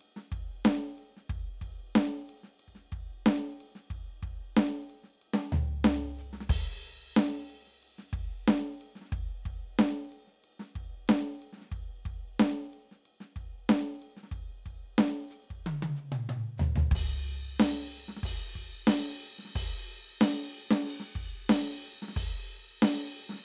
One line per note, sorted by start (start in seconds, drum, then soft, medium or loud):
0.01 ride medium
0.17 snare soft
0.32 kick medium
0.32 ride medium
0.65 snare loud
0.65 ride medium
0.85 snare soft
0.98 ride medium
1.17 snare soft
1.30 kick medium
1.30 ride medium
1.62 kick medium
1.62 ride medium
1.96 snare loud
1.96 ride medium
2.12 snare soft
2.29 ride medium
2.44 snare soft
2.60 ride medium
2.68 kick soft
2.75 snare soft
2.92 kick medium
2.92 ride medium
3.26 snare loud
3.26 ride medium
3.61 ride medium
3.75 snare soft
3.90 kick medium
3.90 ride medium
4.23 kick medium
4.23 ride medium
4.57 snare loud
4.57 ride medium
4.90 ride medium
5.04 snare soft
5.22 ride medium
5.34 snare medium
5.52 floor tom loud
5.85 snare loud
5.85 ride loud
6.17 hi-hat pedal medium
6.17 ride bell soft
6.33 snare soft
6.41 snare soft
6.50 kick loud
6.50 crash loud
6.83 ride soft
7.17 snare loud
7.17 ride medium
7.33 snare soft
7.50 ride medium
7.67 snare soft
7.83 ride medium
7.99 snare soft
8.13 kick medium
8.13 ride medium
8.48 snare loud
8.48 ride medium
8.81 ride medium
8.96 snare soft
9.01 snare soft
9.05 snare soft
9.12 kick medium
9.12 ride medium
9.46 kick medium
9.46 ride medium
9.79 snare loud
9.79 ride medium
9.92 snare soft
9.99 snare soft
10.12 ride medium
10.27 snare soft
10.44 ride medium
10.60 snare soft
10.76 kick medium
10.76 ride medium
11.08 snare loud
11.08 ride medium
11.42 ride medium
11.53 snare soft
11.58 snare soft
11.61 snare soft
11.65 snare soft
11.69 kick medium
11.69 snare soft
11.69 ride medium
12.06 kick medium
12.06 ride medium
12.40 snare loud
12.40 ride medium
12.60 snare soft
12.74 ride soft
12.92 snare soft
13.06 ride medium
13.21 snare soft
13.36 kick medium
13.36 ride medium
13.59 kick soft
13.69 snare loud
13.69 ride medium
14.02 ride medium
14.17 snare soft
14.23 snare soft
14.32 kick medium
14.32 ride medium
14.66 kick soft
14.66 ride medium
14.98 snare loud
14.98 ride medium
15.08 snare soft
15.31 hi-hat pedal medium
15.31 ride medium
15.51 kick soft
15.66 high tom loud
15.83 high tom loud
15.97 hi-hat pedal medium
16.12 mid tom loud
16.29 mid tom loud
16.58 floor tom loud
16.58 hi-hat pedal medium
16.76 floor tom loud
16.91 kick loud
16.91 crash loud
17.26 kick soft
17.26 ride soft
17.59 snare loud
17.59 crash loud
17.68 cross-stick soft
17.75 cross-stick soft
17.81 snare soft
17.93 ride soft
18.09 snare soft
18.17 snare soft
18.23 kick medium
18.23 crash loud
18.56 kick soft
18.87 cross-stick medium
18.87 snare loud
18.87 crash loud
19.22 hi-hat pedal soft
19.39 snare soft
19.45 snare soft
19.49 snare soft
19.55 kick medium
19.55 crash loud
20.21 snare loud
20.21 crash loud
20.29 snare soft
20.71 snare loud
20.86 crash medium
21.00 snare soft
21.15 kick medium
21.49 snare loud
21.49 crash loud
21.58 cross-stick soft
21.66 snare soft
21.83 hi-hat pedal medium
22.02 snare soft
22.09 snare soft
22.13 kick medium
22.13 snare soft
22.13 crash loud
22.82 snare loud
22.82 crash loud
23.29 snare soft
23.34 snare soft
23.36 cross-stick soft
23.36 snare soft